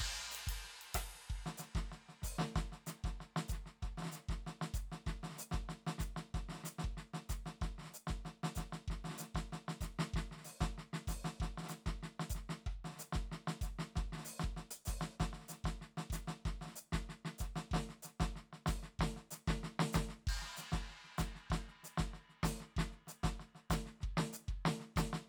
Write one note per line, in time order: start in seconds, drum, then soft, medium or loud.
0.01 kick soft
0.01 ride medium
0.20 snare soft
0.32 hi-hat pedal medium
0.32 ride medium
0.48 kick soft
0.48 ride medium
0.65 snare soft
0.82 ride medium
0.95 kick soft
0.95 cross-stick medium
0.95 hi-hat pedal medium
0.95 ride loud
1.15 snare soft
1.30 kick soft
1.46 snare medium
1.58 snare soft
1.58 hi-hat pedal medium
1.76 kick medium
1.76 snare medium
1.92 snare soft
2.09 snare soft
2.22 kick soft
2.22 snare soft
2.22 hi-hat pedal medium
2.39 snare medium
2.56 kick medium
2.56 snare medium
2.73 snare soft
2.87 snare soft
2.87 hi-hat pedal medium
3.04 kick soft
3.04 snare soft
3.21 snare soft
3.37 snare medium
3.49 kick soft
3.49 snare soft
3.49 hi-hat pedal medium
3.66 snare soft
3.83 kick soft
3.83 snare soft
3.98 snare soft
4.03 snare medium
4.06 snare soft
4.09 snare soft
4.12 snare soft
4.12 hi-hat pedal medium
4.14 snare soft
4.29 kick soft
4.29 snare soft
4.47 snare soft
4.62 snare medium
4.74 kick soft
4.74 snare soft
4.74 hi-hat pedal medium
4.92 snare soft
5.07 kick soft
5.07 snare medium
5.24 snare soft
5.28 snare soft
5.32 snare soft
5.36 snare soft
5.36 hi-hat pedal loud
5.52 kick soft
5.52 snare medium
5.69 snare soft
5.87 snare medium
5.99 kick soft
5.99 snare soft
5.99 hi-hat pedal medium
6.17 snare soft
6.35 kick soft
6.35 snare soft
6.49 snare soft
6.53 snare soft
6.57 snare soft
6.64 snare soft
6.64 hi-hat pedal medium
6.79 snare medium
6.85 kick soft
6.98 snare soft
7.14 snare medium
7.30 kick soft
7.30 snare soft
7.30 hi-hat pedal medium
7.46 snare soft
7.62 kick soft
7.62 snare soft
7.79 snare soft
7.82 snare soft
7.85 snare soft
7.91 snare soft
7.91 hi-hat pedal medium
8.08 kick soft
8.08 snare medium
8.26 snare soft
8.44 snare medium
8.56 kick soft
8.56 snare soft
8.56 hi-hat pedal medium
8.73 snare soft
8.88 kick soft
8.88 snare soft
9.05 snare soft
9.09 snare soft
9.12 snare soft
9.14 snare soft
9.19 snare soft
9.19 hi-hat pedal medium
9.35 kick soft
9.35 snare medium
9.53 snare soft
9.69 snare medium
9.81 kick soft
9.81 snare soft
9.81 hi-hat pedal medium
9.99 snare medium
10.14 kick soft
10.14 snare medium
10.32 snare soft
10.37 snare soft
10.41 snare soft
10.45 snare soft
10.45 hi-hat pedal medium
10.61 kick medium
10.61 snare medium
10.78 snare soft
10.94 snare medium
11.08 kick soft
11.08 snare soft
11.08 hi-hat pedal medium
11.25 snare medium
11.41 kick soft
11.41 snare medium
11.58 snare soft
11.63 cross-stick soft
11.63 snare soft
11.69 snare soft
11.69 hi-hat pedal medium
11.87 kick soft
11.87 snare medium
12.03 snare soft
12.20 snare medium
12.30 kick soft
12.30 hi-hat pedal medium
12.35 snare soft
12.50 snare medium
12.67 kick soft
12.67 cross-stick soft
12.85 snare soft
12.89 snare soft
12.93 snare soft
12.97 snare soft
12.99 snare soft
12.99 hi-hat pedal medium
13.13 kick medium
13.13 snare medium
13.32 snare soft
13.48 snare medium
13.62 kick soft
13.62 snare soft
13.62 hi-hat pedal medium
13.71 kick soft
13.79 snare medium
13.96 kick medium
13.96 snare soft
14.13 snare soft
14.17 snare soft
14.21 snare soft
14.26 snare soft
14.26 hi-hat pedal medium
14.40 snare medium
14.44 kick soft
14.57 snare soft
14.71 closed hi-hat medium
14.86 kick soft
14.86 snare soft
14.86 hi-hat pedal medium
15.02 snare medium
15.20 kick soft
15.20 snare medium
15.34 snare soft
15.38 snare soft
15.41 snare soft
15.45 snare soft
15.45 hi-hat pedal medium
15.50 snare soft
15.65 kick soft
15.65 snare medium
15.82 snare soft
15.98 snare medium
16.11 kick soft
16.11 snare soft
16.11 hi-hat pedal medium
16.28 snare medium
16.46 kick soft
16.46 snare soft
16.62 snare soft
16.66 snare soft
16.70 snare soft
16.76 hi-hat pedal medium
16.93 kick soft
16.93 snare medium
17.10 snare soft
17.25 snare medium
17.39 kick soft
17.39 snare soft
17.39 hi-hat pedal medium
17.56 snare medium
17.72 kick soft
17.72 snare medium
17.89 snare soft
18.03 snare soft
18.03 hi-hat pedal medium
18.20 kick medium
18.20 snare medium
18.36 snare soft
18.53 snare soft
18.67 kick medium
18.67 snare medium
18.67 hi-hat pedal medium
18.83 snare soft
19.00 kick soft
19.00 snare medium
19.17 snare soft
19.31 snare soft
19.31 hi-hat pedal loud
19.48 kick medium
19.48 snare medium
19.64 snare soft
19.80 snare medium
19.93 kick soft
19.93 snare medium
19.93 hi-hat pedal medium
20.09 snare soft
20.28 kick medium
20.28 ride medium
20.42 snare soft
20.57 snare soft
20.57 hi-hat pedal medium
20.72 kick soft
20.72 snare medium
20.90 snare soft
21.05 snare soft
21.19 kick soft
21.19 snare medium
21.19 hi-hat pedal medium
21.36 snare soft
21.51 kick soft
21.51 snare medium
21.69 snare soft
21.84 snare soft
21.84 hi-hat pedal medium
21.98 kick soft
21.98 snare medium
22.14 snare soft
22.30 snare soft
22.44 kick soft
22.44 snare medium
22.44 hi-hat pedal medium
22.61 snare soft
22.77 kick soft
22.77 snare medium
22.92 snare soft
23.08 snare soft
23.08 hi-hat pedal medium
23.24 kick soft
23.24 snare medium
23.40 snare soft
23.55 snare soft
23.71 kick soft
23.71 snare medium
23.71 hi-hat pedal medium
23.86 snare soft
24.01 kick soft
24.01 snare soft
24.18 snare medium
24.33 snare soft
24.33 hi-hat pedal medium
24.48 kick soft
24.48 snare soft
24.66 snare medium
24.81 snare soft
24.97 kick soft
24.97 snare medium
24.97 hi-hat pedal medium
25.14 snare medium